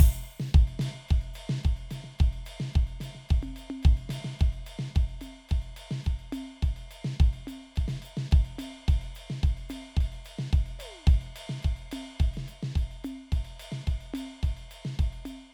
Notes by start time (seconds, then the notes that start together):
0.01 open hi-hat, kick, ride
0.32 ride
0.41 snare
0.55 kick, hi-hat pedal, ride
0.69 ride
0.81 snare, ride
0.95 snare
1.10 kick, ride
1.23 ride
1.35 hi-hat pedal, ride
1.51 snare
1.65 kick, ride
1.78 ride
1.92 snare, hi-hat pedal, ride
2.05 snare
2.20 kick, ride
2.31 snare, ride
2.47 hi-hat pedal, ride
2.62 snare
2.75 kick, ride
2.88 ride
3.02 snare, hi-hat pedal, ride
3.16 snare
3.31 kick, ride
3.44 high tom, ride
3.58 hi-hat pedal, ride
3.72 high tom
3.84 kick, ride
3.98 ride
4.11 snare, hi-hat pedal, ride
4.26 snare
4.41 kick, ride
4.54 ride
4.68 hi-hat pedal, ride
4.80 snare
4.97 kick, ride
5.10 ride
5.22 hi-hat pedal, high tom, ride
5.50 kick, ride
5.63 ride
5.78 hi-hat pedal, ride
5.92 snare
6.06 kick, ride
6.20 ride
6.34 hi-hat pedal, high tom, ride
6.64 kick, ride
6.78 ride
6.92 hi-hat pedal, ride
7.06 snare
7.21 kick, ride
7.34 ride
7.49 hi-hat pedal, high tom, ride
7.77 kick, ride
7.90 snare, ride
8.04 hi-hat pedal, ride
8.19 snare
8.33 kick, ride
8.46 ride
8.60 hi-hat pedal, high tom, ride
8.90 kick, ride
9.03 ride
9.16 hi-hat pedal, ride
9.32 snare
9.45 kick, ride
9.59 ride
9.71 hi-hat pedal, high tom, ride
9.98 kick, ride
10.13 ride
10.26 hi-hat pedal, ride
10.40 snare
10.54 kick, ride
10.67 ride
10.80 hi-hat pedal, high tom, ride
11.09 kick, ride
11.22 ride
11.37 hi-hat pedal, ride
11.51 snare
11.64 kick, ride
11.78 ride
11.93 hi-hat pedal, high tom, ride
12.21 kick, ride
12.35 snare, ride
12.49 hi-hat pedal, ride
12.64 snare
12.77 kick, ride
12.92 ride
13.06 hi-hat pedal, high tom, ride
13.34 kick, ride
13.46 ride
13.61 hi-hat pedal, ride
13.73 snare
13.89 kick, ride
14.02 ride
14.15 hi-hat pedal, high tom, ride
14.44 kick, ride
14.58 ride
14.72 hi-hat pedal, ride
14.87 snare
15.00 kick, ride
15.14 ride
15.27 hi-hat pedal, high tom, ride